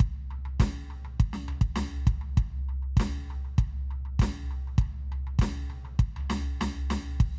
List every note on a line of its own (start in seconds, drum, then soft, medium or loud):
0.01 kick loud
0.01 floor tom medium
0.31 floor tom medium
0.46 floor tom medium
0.61 kick loud
0.61 snare loud
0.61 floor tom loud
0.91 floor tom medium
1.06 floor tom medium
1.21 kick loud
1.21 floor tom medium
1.34 snare loud
1.49 floor tom loud
1.62 kick loud
1.77 snare loud
1.77 floor tom loud
2.08 kick loud
2.08 floor tom loud
2.22 floor tom medium
2.38 kick loud
2.38 floor tom loud
2.69 floor tom medium
2.83 floor tom soft
2.98 kick loud
2.98 snare loud
2.98 floor tom loud
3.31 floor tom medium
3.46 floor tom soft
3.59 kick loud
3.59 floor tom loud
3.91 floor tom medium
4.06 floor tom soft
4.20 kick loud
4.20 snare loud
4.20 floor tom loud
4.51 floor tom medium
4.68 floor tom soft
4.79 kick loud
4.79 floor tom loud
5.13 floor tom medium
5.28 floor tom medium
5.40 kick loud
5.40 snare loud
5.40 floor tom loud
5.71 floor tom medium
5.86 floor tom medium
6.00 kick loud
6.00 floor tom loud
6.17 floor tom loud
6.30 snare loud
6.30 floor tom loud
6.62 snare loud
6.62 floor tom loud
6.91 snare loud
6.91 floor tom loud
7.21 kick loud
7.21 crash medium